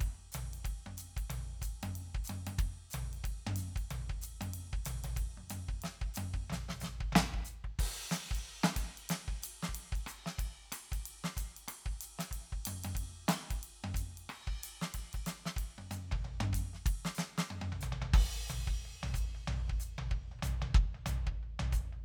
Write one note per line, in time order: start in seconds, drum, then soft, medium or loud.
0.01 kick medium
0.01 ride medium
0.32 floor tom medium
0.32 hi-hat pedal medium
0.32 ride medium
0.54 ride soft
0.65 kick medium
0.65 ride medium
0.87 high tom medium
0.98 hi-hat pedal medium
0.98 ride medium
1.17 kick medium
1.17 ride medium
1.30 floor tom loud
1.30 ride medium
1.62 kick medium
1.62 hi-hat pedal medium
1.62 ride medium
1.83 high tom loud
1.83 ride medium
1.96 ride medium
2.15 kick medium
2.25 hi-hat pedal medium
2.25 ride medium
2.30 kick soft
2.30 high tom loud
2.47 high tom medium
2.47 ride medium
2.59 kick medium
2.59 ride medium
2.91 floor tom loud
2.91 hi-hat pedal medium
2.91 ride medium
3.13 ride soft
3.24 kick medium
3.24 ride medium
3.47 high tom loud
3.56 hi-hat pedal medium
3.56 ride medium
3.76 kick medium
3.76 ride soft
3.91 floor tom loud
3.91 ride medium
4.10 kick medium
4.22 hi-hat pedal medium
4.22 ride medium
4.41 high tom loud
4.41 ride medium
4.54 ride medium
4.73 kick medium
4.85 floor tom loud
4.85 hi-hat pedal medium
4.85 ride medium
5.04 floor tom medium
5.04 ride medium
5.17 kick medium
5.17 ride medium
5.38 high tom soft
5.50 hi-hat pedal medium
5.50 high tom medium
5.50 ride medium
5.69 kick medium
5.82 snare medium
5.82 ride medium
6.02 kick medium
6.14 hi-hat pedal medium
6.14 high tom loud
6.14 ride medium
6.34 kick medium
6.50 snare medium
6.50 floor tom medium
6.69 snare medium
6.69 floor tom medium
6.81 snare medium
6.81 floor tom medium
6.81 hi-hat pedal medium
7.01 kick medium
7.13 snare loud
7.13 floor tom loud
7.34 kick medium
7.45 hi-hat pedal medium
7.65 kick soft
7.79 kick medium
7.79 crash medium
8.12 snare loud
8.12 hi-hat pedal medium
8.12 ride soft
8.31 kick medium
8.35 ride medium
8.47 ride soft
8.64 snare loud
8.76 kick medium
8.76 hi-hat pedal medium
8.76 ride medium
8.98 ride soft
9.10 snare loud
9.10 ride medium
9.28 kick medium
9.43 hi-hat pedal medium
9.43 ride loud
9.63 snare medium
9.69 kick soft
9.75 ride medium
9.93 kick medium
9.93 ride soft
10.07 cross-stick medium
10.07 hi-hat pedal medium
10.07 ride soft
10.26 snare medium
10.39 kick medium
10.39 ride medium
10.72 cross-stick medium
10.72 hi-hat pedal medium
10.72 ride medium
10.92 kick medium
10.92 ride medium
11.06 ride medium
11.24 snare medium
11.37 kick medium
11.37 hi-hat pedal medium
11.37 ride medium
11.57 ride medium
11.68 cross-stick medium
11.68 ride medium
11.86 kick medium
12.01 hi-hat pedal medium
12.01 ride medium
12.19 snare medium
12.19 ride medium
12.31 kick soft
12.31 ride medium
12.53 kick medium
12.66 hi-hat pedal medium
12.66 high tom medium
12.66 ride loud
12.84 high tom loud
12.84 ride medium
12.95 kick medium
12.95 ride medium
13.29 snare loud
13.29 hi-hat pedal medium
13.29 ride medium
13.51 kick medium
13.51 ride medium
13.63 ride medium
13.84 high tom loud
13.95 kick medium
13.95 hi-hat pedal medium
13.95 ride medium
14.18 ride soft
14.30 cross-stick medium
14.30 ride medium
14.48 kick medium
14.63 hi-hat pedal medium
14.63 ride medium
14.82 snare medium
14.94 kick soft
14.94 ride medium
15.13 kick medium
15.13 ride soft
15.26 snare medium
15.26 hi-hat pedal medium
15.26 ride medium
15.46 snare medium
15.57 kick medium
15.57 ride medium
15.78 high tom medium
15.91 hi-hat pedal medium
15.91 high tom loud
16.12 kick medium
16.12 floor tom medium
16.25 floor tom medium
16.41 high tom loud
16.53 kick medium
16.53 hi-hat pedal medium
16.53 ride medium
16.74 snare soft
16.86 kick medium
16.86 ride medium
17.05 snare medium
17.15 snare medium
17.15 hi-hat pedal medium
17.38 snare loud
17.51 high tom medium
17.62 high tom loud
17.72 floor tom medium
17.81 floor tom medium
17.81 hi-hat pedal medium
17.93 floor tom loud
18.02 floor tom loud
18.14 kick loud
18.14 crash medium
18.49 floor tom loud
18.49 hi-hat pedal medium
18.68 kick medium
18.86 floor tom soft
19.04 floor tom loud
19.14 kick medium
19.14 hi-hat pedal medium
19.35 floor tom soft
19.48 floor tom loud
19.68 kick medium
19.68 floor tom soft
19.80 floor tom soft
19.80 hi-hat pedal medium
19.99 floor tom loud
20.11 kick medium
20.11 floor tom medium
20.32 floor tom soft
20.39 kick soft
20.39 floor tom loud
20.44 hi-hat pedal medium
20.62 floor tom loud
20.75 kick loud
20.75 floor tom medium
20.95 floor tom soft
21.06 floor tom loud
21.06 hi-hat pedal medium
21.27 kick medium
21.27 floor tom soft
21.43 floor tom soft
21.60 floor tom loud
21.73 kick medium
21.73 floor tom soft
21.73 hi-hat pedal medium
21.93 floor tom soft